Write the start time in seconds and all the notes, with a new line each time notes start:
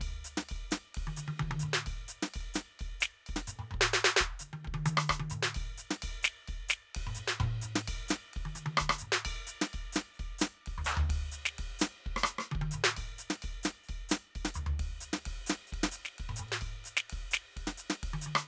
0.01 kick, ride bell
0.07 kick
0.24 hi-hat pedal, ride
0.37 snare
0.49 kick, ride bell
0.56 ride
0.71 snare, hi-hat pedal
0.95 kick, ride
1.05 kick, high tom
1.17 hi-hat pedal, high tom
1.28 high tom
1.37 hi-hat pedal, high tom
1.42 kick
1.51 high tom
1.60 hi-hat pedal, mid tom
1.73 snare
1.86 kick, ride bell
2.08 hi-hat pedal
2.23 snare
2.34 kick, ride bell
2.41 ride
2.54 snare, hi-hat pedal
2.79 kick, ride bell
3.01 snare, hi-hat pedal
3.26 kick, ride bell
3.36 snare
3.47 hi-hat pedal, mid tom
3.59 mid tom
3.71 kick, mid tom
3.81 snare
3.93 snare, hi-hat pedal
4.00 ride
4.04 snare
4.17 snare
4.21 kick
4.28 kick
4.39 hi-hat pedal, high tom
4.53 high tom
4.65 kick, high tom
4.74 kick, high tom
4.86 hi-hat pedal, high tom
4.97 cross-stick
5.07 kick, cross-stick, hi-hat pedal
5.20 high tom
5.30 hi-hat pedal, mid tom
5.43 snare
5.55 kick, ride bell
5.63 kick
5.78 hi-hat pedal, ride
5.91 snare
6.02 kick, ride bell
6.09 kick
6.23 snare, hi-hat pedal
6.48 kick, ride bell
6.69 snare, hi-hat pedal
6.95 kick, ride
7.04 kick, mid tom
7.15 hi-hat pedal
7.28 snare
7.40 kick, mid tom
7.46 kick
7.62 hi-hat pedal, mid tom
7.76 snare
7.84 hi-hat pedal, ride bell
7.88 kick
8.08 snare, hi-hat pedal
8.33 kick, ride
8.45 high tom
8.55 hi-hat pedal, high tom
8.66 high tom
8.77 kick, cross-stick
8.90 cross-stick
8.99 hi-hat pedal, mid tom
9.12 snare
9.25 kick, ride bell
9.47 hi-hat pedal, ride
9.62 snare
9.69 hi-hat pedal
9.73 kick, ride bell
9.93 snare, hi-hat pedal
10.14 hi-hat pedal
10.20 kick, ride bell
10.39 snare, hi-hat pedal
10.66 kick, ride
10.78 floor tom
10.85 percussion, hi-hat pedal
10.97 floor tom
11.10 kick, ride
11.15 kick
11.32 hi-hat pedal, ride
11.46 snare
11.59 kick, ride
11.79 snare, hi-hat pedal
12.06 kick
12.16 cross-stick
12.24 cross-stick, hi-hat pedal
12.39 cross-stick
12.41 cross-stick
12.52 kick, high tom
12.62 kick, high tom
12.71 hi-hat pedal, mid tom
12.84 snare
12.97 kick, ride bell
13.18 hi-hat pedal, ride
13.30 snare
13.39 hi-hat pedal, ride bell
13.44 kick
13.63 snare, hi-hat pedal
13.84 hi-hat pedal
13.89 kick, ride bell
14.09 snare, hi-hat pedal
14.35 kick, ride bell
14.45 snare
14.54 floor tom, hi-hat pedal
14.66 floor tom
14.80 kick, ride
15.01 hi-hat pedal, ride
15.13 snare
15.20 hi-hat pedal
15.26 kick, ride
15.47 snare, hi-hat pedal
15.67 hi-hat pedal
15.73 kick, ride
15.83 snare
15.92 hi-hat pedal
15.96 ride
16.05 snare
16.18 kick, ride
16.27 kick, mid tom
16.36 hi-hat pedal, mid tom
16.49 snare, ride
16.61 kick, ride bell
16.84 hi-hat pedal, ride
16.97 snare
17.10 kick, ride
17.31 snare, hi-hat pedal
17.52 hi-hat pedal
17.57 kick, ride
17.67 snare
17.78 hi-hat pedal, ride
17.90 snare
18.03 kick, ride
18.11 kick, high tom
18.22 hi-hat pedal
18.26 high tom
18.35 cross-stick